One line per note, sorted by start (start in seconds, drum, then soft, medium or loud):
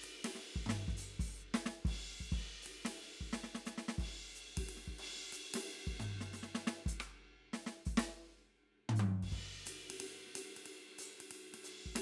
0.01 hi-hat pedal medium
0.01 ride medium
0.24 snare medium
0.24 ride loud
0.35 snare soft
0.35 ride medium
0.56 kick soft
0.66 snare medium
0.66 floor tom medium
0.88 kick soft
0.88 open hi-hat soft
0.97 hi-hat pedal medium
1.19 open hi-hat medium
1.19 kick soft
1.54 snare medium
1.66 snare medium
1.85 kick medium
1.85 ride medium
2.20 kick soft
2.32 kick medium
2.32 crash medium
2.62 hi-hat pedal medium
2.62 ride medium
2.85 snare medium
2.85 ride medium
2.97 ride medium
3.21 kick soft
3.30 snare medium
3.30 hi-hat pedal soft
3.43 snare soft
3.55 snare medium
3.66 snare medium
3.66 hi-hat pedal medium
3.78 snare medium
3.88 snare medium
3.98 kick soft
3.98 ride medium
4.35 hi-hat pedal medium
4.35 ride soft
4.48 snare soft
4.57 kick soft
4.57 ride loud
4.69 ride medium
4.77 snare soft
4.88 kick soft
4.99 ride medium
5.16 snare soft
5.32 hi-hat pedal medium
5.32 ride medium
5.54 snare medium
5.54 ride loud
5.65 ride soft
5.87 kick soft
6.00 floor tom medium
6.00 hi-hat pedal medium
6.10 high tom soft
6.21 snare soft
6.33 snare soft
6.33 hi-hat pedal medium
6.43 snare soft
6.55 snare medium
6.67 snare medium
6.86 open hi-hat medium
6.86 kick soft
7.00 cross-stick medium
7.00 hi-hat pedal medium
7.53 snare medium
7.62 hi-hat pedal soft
7.66 snare medium
7.85 open hi-hat soft
7.85 kick soft
7.97 snare loud
8.89 floor tom loud
8.96 hi-hat pedal medium
8.96 high tom loud
9.01 closed hi-hat soft
9.23 kick soft
9.23 ride medium
9.32 kick soft
9.32 crash medium
9.66 hi-hat pedal loud
9.66 ride medium
9.90 ride medium
10.00 ride loud
10.26 snare soft
10.35 hi-hat pedal loud
10.35 ride loud
10.57 ride medium
10.66 ride medium
10.88 snare soft
10.98 hi-hat pedal loud
10.98 ride medium
11.20 ride medium
11.31 ride medium
11.53 snare soft
11.53 ride medium
11.63 hi-hat pedal medium
11.63 ride medium
11.86 kick soft
11.95 snare medium
11.95 ride loud